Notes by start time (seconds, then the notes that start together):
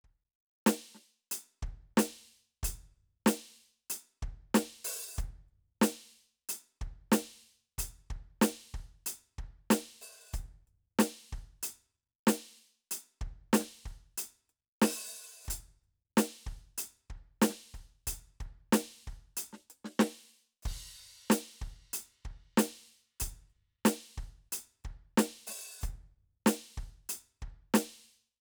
0.06 kick
0.66 closed hi-hat, snare
0.94 snare
1.31 closed hi-hat
1.62 kick
1.66 closed hi-hat
1.97 closed hi-hat, snare
2.63 closed hi-hat, kick
3.26 closed hi-hat, snare
3.90 closed hi-hat
4.22 kick, closed hi-hat
4.54 closed hi-hat, snare
4.84 open hi-hat
5.17 kick, hi-hat pedal
5.48 closed hi-hat
5.81 closed hi-hat, snare
6.49 closed hi-hat
6.81 kick, closed hi-hat
7.12 closed hi-hat, snare
7.78 closed hi-hat, kick
8.10 kick, closed hi-hat
8.41 closed hi-hat, snare
8.74 kick
9.06 closed hi-hat
9.38 kick, closed hi-hat
9.70 closed hi-hat, snare
10.01 open hi-hat
10.33 closed hi-hat, kick, hi-hat pedal
10.67 closed hi-hat
10.99 closed hi-hat, snare
11.31 kick, closed hi-hat
11.63 closed hi-hat
12.27 closed hi-hat, snare
12.58 closed hi-hat
12.91 closed hi-hat
13.21 kick, closed hi-hat
13.53 closed hi-hat, snare
13.60 snare
13.85 kick, closed hi-hat
14.17 closed hi-hat
14.49 closed hi-hat
14.82 open hi-hat, snare
15.44 kick, hi-hat pedal
15.50 closed hi-hat
15.84 closed hi-hat
16.17 closed hi-hat, snare
16.46 kick
16.78 closed hi-hat
17.10 kick, closed hi-hat
17.42 closed hi-hat, snare
17.49 snare
17.74 kick, closed hi-hat
18.07 closed hi-hat, kick
18.40 kick, closed hi-hat
18.72 closed hi-hat, snare
19.06 kick, closed hi-hat
19.37 closed hi-hat
19.53 snare
19.70 closed hi-hat
19.84 snare
19.99 snare
20.62 kick, hi-hat pedal, crash
21.30 closed hi-hat, snare
21.61 kick
21.93 closed hi-hat
22.24 kick, closed hi-hat
22.57 closed hi-hat, snare
22.86 closed hi-hat
23.20 closed hi-hat, kick
23.50 closed hi-hat
23.85 closed hi-hat, snare
24.17 kick, closed hi-hat
24.52 closed hi-hat
24.84 kick, closed hi-hat
25.17 closed hi-hat, snare
25.47 open hi-hat, snare
25.81 closed hi-hat, kick, hi-hat pedal
26.46 closed hi-hat, snare
26.77 kick, closed hi-hat
27.09 closed hi-hat
27.41 kick, closed hi-hat
27.74 closed hi-hat, snare